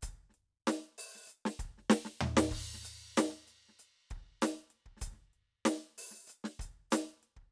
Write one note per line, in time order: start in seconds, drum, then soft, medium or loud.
0.01 closed hi-hat medium
0.01 kick soft
0.01 hi-hat pedal soft
0.29 snare soft
0.34 closed hi-hat soft
0.67 closed hi-hat soft
0.67 snare medium
0.98 open hi-hat medium
1.15 snare soft
1.26 closed hi-hat soft
1.26 hi-hat pedal medium
1.45 snare medium
1.59 kick soft
1.59 closed hi-hat medium
1.65 kick soft
1.67 kick soft
1.78 snare soft
1.90 snare loud
2.05 snare soft
2.21 floor tom loud
2.37 snare loud
2.48 kick soft
2.48 snare soft
2.52 crash medium
2.56 kick soft
2.74 snare soft
2.81 closed hi-hat medium
2.81 snare soft
3.17 closed hi-hat medium
3.17 snare loud
3.29 snare soft
3.47 closed hi-hat soft
3.68 snare soft
3.79 closed hi-hat soft
4.10 kick soft
4.10 closed hi-hat soft
4.42 open hi-hat medium
4.42 snare loud
4.42 hi-hat pedal soft
4.70 closed hi-hat soft
4.86 kick soft
4.97 snare soft
4.97 hi-hat pedal soft
5.01 closed hi-hat medium
5.01 kick soft
5.07 kick soft
5.11 snare soft
5.13 snare soft
5.33 closed hi-hat soft
5.65 closed hi-hat medium
5.65 snare loud
5.98 open hi-hat medium
6.11 snare soft
6.16 snare soft
6.27 closed hi-hat soft
6.27 hi-hat pedal medium
6.44 snare medium
6.59 closed hi-hat medium
6.59 kick soft
6.90 closed hi-hat medium
6.90 snare loud
6.90 hi-hat pedal soft
7.23 closed hi-hat soft
7.36 kick soft